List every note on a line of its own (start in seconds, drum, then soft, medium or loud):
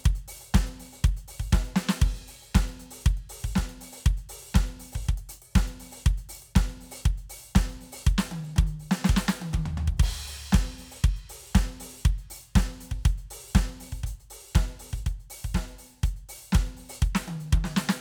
0.01 closed hi-hat medium
0.01 hi-hat pedal soft
0.06 kick loud
0.15 closed hi-hat medium
0.28 open hi-hat loud
0.40 open hi-hat medium
0.51 kick loud
0.51 snare loud
0.51 hi-hat pedal soft
0.67 closed hi-hat medium
0.80 open hi-hat medium
0.92 open hi-hat medium
1.00 hi-hat pedal soft
1.04 kick loud
1.04 closed hi-hat medium
1.17 closed hi-hat medium
1.28 open hi-hat loud
1.40 open hi-hat soft
1.40 kick medium
1.52 kick loud
1.52 snare loud
1.52 hi-hat pedal soft
1.64 closed hi-hat medium
1.76 snare loud
1.89 snare loud
1.97 hi-hat pedal soft
2.02 kick loud
2.02 crash medium
2.16 closed hi-hat soft
2.28 open hi-hat medium
2.42 open hi-hat medium
2.52 kick loud
2.52 snare loud
2.52 hi-hat pedal soft
2.68 closed hi-hat medium
2.80 closed hi-hat medium
2.91 open hi-hat loud
3.03 kick loud
3.03 hi-hat pedal soft
3.07 closed hi-hat soft
3.17 closed hi-hat soft
3.30 open hi-hat loud
3.42 kick medium
3.42 open hi-hat medium
3.56 kick medium
3.56 snare loud
3.56 hi-hat pedal soft
3.69 closed hi-hat medium
3.81 open hi-hat loud
3.92 open hi-hat loud
4.01 hi-hat pedal soft
4.06 kick loud
4.06 closed hi-hat medium
4.17 closed hi-hat medium
4.29 open hi-hat loud
4.43 open hi-hat medium
4.53 kick loud
4.53 snare loud
4.53 hi-hat pedal soft
4.67 closed hi-hat soft
4.80 open hi-hat loud
4.92 open hi-hat loud
4.92 kick medium
5.06 kick loud
5.06 hi-hat pedal soft
5.06 open hi-hat soft
5.18 closed hi-hat medium
5.29 open hi-hat loud
5.42 open hi-hat medium
5.54 kick loud
5.54 snare loud
5.54 hi-hat pedal soft
5.68 closed hi-hat medium
5.80 open hi-hat loud
5.92 open hi-hat loud
6.01 hi-hat pedal soft
6.06 kick loud
6.06 closed hi-hat medium
6.18 closed hi-hat medium
6.29 open hi-hat loud
6.42 open hi-hat medium
6.51 hi-hat pedal soft
6.56 kick loud
6.56 snare loud
6.70 closed hi-hat soft
6.81 open hi-hat medium
6.91 open hi-hat loud
7.00 hi-hat pedal soft
7.06 kick loud
7.06 closed hi-hat soft
7.18 closed hi-hat soft
7.30 open hi-hat loud
7.43 open hi-hat soft
7.51 hi-hat pedal soft
7.55 kick loud
7.55 snare loud
7.69 closed hi-hat medium
7.77 kick soft
7.81 open hi-hat medium
7.92 open hi-hat loud
8.02 hi-hat pedal soft
8.06 closed hi-hat medium
8.06 kick loud
8.18 snare loud
8.31 high tom loud
8.43 open hi-hat medium
8.53 hi-hat pedal soft
8.53 high tom loud
8.58 kick loud
8.67 closed hi-hat medium
8.80 open hi-hat medium
8.91 snare loud
9.04 snare loud
9.04 hi-hat pedal soft
9.09 kick loud
9.17 snare loud
9.28 snare loud
9.42 high tom loud
9.51 kick medium
9.51 hi-hat pedal soft
9.51 high tom loud
9.66 floor tom loud
9.78 floor tom loud
9.88 kick medium
9.97 kick loud
9.97 hi-hat pedal soft
10.03 crash loud
10.27 open hi-hat loud
10.42 open hi-hat soft
10.50 snare loud
10.50 hi-hat pedal soft
10.54 kick loud
10.64 closed hi-hat soft
10.78 open hi-hat medium
10.91 open hi-hat loud
10.98 hi-hat pedal soft
11.04 kick loud
11.04 closed hi-hat soft
11.16 closed hi-hat soft
11.29 open hi-hat loud
11.43 open hi-hat soft
11.51 snare loud
11.51 hi-hat pedal soft
11.55 kick loud
11.69 closed hi-hat soft
11.80 open hi-hat loud
11.94 open hi-hat soft
12.02 kick loud
12.02 hi-hat pedal soft
12.07 closed hi-hat soft
12.18 closed hi-hat soft
12.30 open hi-hat loud
12.43 open hi-hat soft
12.52 kick loud
12.52 hi-hat pedal soft
12.56 snare loud
12.68 closed hi-hat soft
12.81 open hi-hat loud
12.91 kick medium
12.91 open hi-hat soft
13.03 kick loud
13.03 hi-hat pedal soft
13.07 closed hi-hat medium
13.18 closed hi-hat soft
13.31 open hi-hat loud
13.44 open hi-hat soft
13.51 kick loud
13.51 hi-hat pedal soft
13.55 snare loud
13.69 closed hi-hat soft
13.80 open hi-hat loud
13.92 kick soft
13.92 open hi-hat soft
13.99 hi-hat pedal soft
14.04 closed hi-hat loud
14.04 kick medium
14.20 open hi-hat soft
14.30 open hi-hat loud
14.42 open hi-hat soft
14.52 snare loud
14.52 hi-hat pedal soft
14.56 kick loud
14.69 closed hi-hat soft
14.80 open hi-hat loud
14.93 kick medium
14.93 open hi-hat soft
14.98 hi-hat pedal soft
15.06 closed hi-hat medium
15.06 kick medium
15.20 open hi-hat soft
15.30 open hi-hat loud
15.45 kick medium
15.52 snare loud
15.52 hi-hat pedal soft
15.68 closed hi-hat soft
15.79 open hi-hat medium
15.90 open hi-hat soft
16.03 closed hi-hat medium
16.03 kick loud
16.03 hi-hat pedal soft
16.16 closed hi-hat soft
16.29 open hi-hat loud
16.41 open hi-hat soft
16.50 snare loud
16.50 hi-hat pedal soft
16.55 kick loud
16.66 closed hi-hat soft
16.77 open hi-hat medium
16.89 open hi-hat loud
16.96 hi-hat pedal soft
17.02 closed hi-hat medium
17.02 kick loud
17.15 snare loud
17.28 high tom loud
17.40 open hi-hat medium
17.46 hi-hat pedal soft
17.53 kick loud
17.53 high tom loud
17.64 snare medium
17.77 snare loud
17.89 snare loud